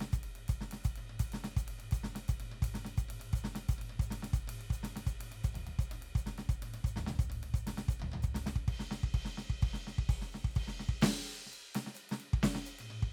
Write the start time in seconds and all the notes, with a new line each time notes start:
0.01 snare, ride
0.13 kick, hi-hat pedal
0.24 high tom, ride
0.36 high tom, ride
0.49 kick, hi-hat pedal, ride
0.61 snare
0.72 snare, ride
0.84 kick, hi-hat pedal, ride
0.96 high tom, ride
1.10 high tom
1.20 kick, hi-hat pedal, ride
1.33 snare, ride
1.44 snare, ride
1.57 kick, hi-hat pedal
1.68 high tom, ride
1.79 high tom, ride
1.92 kick, hi-hat pedal, ride
2.04 snare
2.16 snare, ride
2.28 kick, hi-hat pedal, ride
2.40 high tom, ride
2.52 high tom
2.62 kick, hi-hat pedal, ride
2.74 snare, ride
2.85 snare, ride
2.98 kick, hi-hat pedal
3.09 high tom, ride
3.20 high tom, ride
3.33 kick, hi-hat pedal, ride
3.44 snare
3.55 snare, ride
3.69 kick, hi-hat pedal, ride
3.79 high tom, ride
3.90 high tom
4.00 kick, hi-hat pedal
4.11 snare, ride
4.23 snare, ride
4.34 kick, hi-hat pedal
4.48 high tom, ride
4.59 high tom, ride
4.71 kick, hi-hat pedal
4.83 snare, ride
4.96 snare, ride
5.07 kick, hi-hat pedal
5.21 high tom, ride
5.32 high tom, ride
5.44 kick, hi-hat pedal
5.55 floor tom, ride
5.67 floor tom, ride
5.79 kick, hi-hat pedal
5.92 high tom, ride
6.02 high tom, ride
6.16 kick, hi-hat pedal
6.26 snare, ride
6.38 snare, ride
6.49 kick, hi-hat pedal
6.62 high tom, ride
6.74 high tom, ride
6.85 kick, hi-hat pedal
6.96 snare, floor tom
7.07 snare, floor tom
7.19 kick, hi-hat pedal
7.30 high tom, ride
7.43 high tom, ride
7.54 kick, hi-hat pedal
7.67 snare, ride
7.78 snare, ride
7.89 kick, hi-hat pedal
8.00 floor tom, high tom
8.12 floor tom, high tom
8.23 kick, hi-hat pedal
8.35 snare, ride
8.46 snare, ride
8.56 kick
8.68 kick, ride
8.80 snare
8.91 snare
9.04 kick
9.14 kick, ride
9.25 snare
9.38 snare
9.50 kick
9.62 kick, ride
9.74 snare
9.87 snare
9.99 kick
10.09 open hi-hat, kick
10.22 snare
10.35 snare
10.45 kick
10.56 kick, ride
10.68 snare
10.80 snare
10.89 kick
11.02 snare, crash
11.46 snare
11.52 hi-hat pedal, ride
11.75 snare, ride
11.87 snare
11.95 hi-hat pedal, ride
12.10 snare, ride
12.20 ride
12.34 kick
12.43 snare, ride
12.55 snare
12.66 hi-hat pedal, ride
12.79 high tom, ride
12.91 high tom
13.03 kick